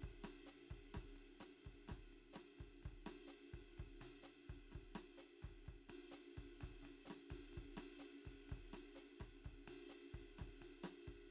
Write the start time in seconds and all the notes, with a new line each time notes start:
0.03 kick, ride
0.09 kick
0.24 cross-stick, ride
0.47 hi-hat pedal, ride
0.71 kick, ride
0.94 kick, cross-stick, snare, ride
1.02 kick
1.16 ride
1.40 cross-stick, hi-hat pedal, ride
1.65 kick, ride
1.88 kick, cross-stick, snare, ride
1.97 kick
2.13 ride
2.33 cross-stick, snare, hi-hat pedal, ride
2.59 kick, ride
2.83 kick, ride
2.91 kick
3.06 cross-stick, snare, ride
3.28 hi-hat pedal, ride
3.54 kick, ride
3.78 kick, ride
3.85 kick
4.01 snare, ride
4.23 hi-hat pedal, ride
4.50 kick, ride
4.55 kick
4.72 kick, cross-stick, ride
4.80 kick
4.95 cross-stick, ride
5.18 hi-hat pedal, ride
5.43 kick, snare, ride
5.49 kick
5.66 kick, ride
5.89 cross-stick, ride
6.12 hi-hat pedal, ride
6.38 kick, ride
6.61 kick, snare, ride
6.69 kick, snare
6.83 snare, ride
7.05 hi-hat pedal, ride
7.10 cross-stick, snare
7.31 kick, ride
7.37 kick
7.53 ride
7.57 kick
7.62 kick
7.77 cross-stick, ride
7.99 hi-hat pedal, ride
8.26 kick, ride
8.50 kick, ride
8.57 kick
8.74 cross-stick, ride
8.96 hi-hat pedal, ride
9.20 kick, cross-stick, snare, ride
9.45 kick, ride
9.51 kick
9.58 snare
9.68 snare, ride
9.90 hi-hat pedal, ride
10.14 kick, ride
10.39 kick, cross-stick, snare, ride
10.46 kick
10.62 snare, ride
10.84 cross-stick, hi-hat pedal, ride
11.08 kick, ride